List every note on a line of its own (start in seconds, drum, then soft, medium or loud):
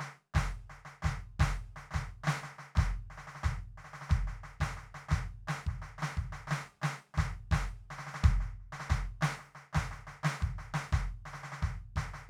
0.01 snare medium
0.35 kick medium
0.35 snare soft
0.37 snare medium
0.71 snare soft
0.86 snare soft
1.03 kick medium
1.03 snare soft
1.06 snare medium
1.41 kick medium
1.41 snare soft
1.41 snare loud
1.77 snare soft
1.92 snare soft
1.95 kick soft
1.95 snare medium
2.25 snare medium
2.28 snare loud
2.44 snare soft
2.60 snare soft
2.76 kick medium
2.76 snare soft
2.79 snare medium
3.11 snare soft
3.19 snare soft
3.28 snare soft
3.36 snare soft
3.44 kick medium
3.44 snare medium
3.79 snare soft
3.85 snare soft
3.94 snare soft
4.02 snare soft
4.11 kick medium
4.11 snare medium
4.28 snare soft
4.44 snare soft
4.61 kick soft
4.61 snare soft
4.61 snare medium
4.78 snare soft
4.95 snare soft
5.10 snare soft
5.12 kick medium
5.12 snare medium
5.49 snare soft
5.49 snare medium
5.68 kick medium
5.68 snare soft
5.83 snare soft
5.99 snare soft
6.03 snare medium
6.18 kick medium
6.18 snare soft
6.33 snare soft
6.48 snare soft
6.52 snare medium
6.83 snare soft
6.84 snare medium
7.15 kick medium
7.15 snare soft
7.19 snare medium
7.52 kick medium
7.52 snare soft
7.52 snare medium
7.91 snare soft
7.99 snare soft
8.08 snare soft
8.15 snare medium
8.25 kick loud
8.25 snare medium
8.41 snare soft
8.61 snare soft
8.73 snare soft
8.81 snare medium
8.91 kick medium
8.91 snare medium
9.22 snare soft
9.22 snare loud
9.40 snare soft
9.56 snare soft
9.74 snare soft
9.76 kick medium
9.76 snare medium
9.92 snare soft
10.08 snare soft
10.24 snare medium
10.24 snare loud
10.41 kick medium
10.41 snare soft
10.59 snare soft
10.75 snare medium
10.93 kick medium
10.93 snare medium
11.26 snare soft
11.34 snare soft
11.44 snare soft
11.53 snare soft
11.63 kick medium
11.63 snare soft
11.97 kick soft
11.97 snare medium
12.15 snare soft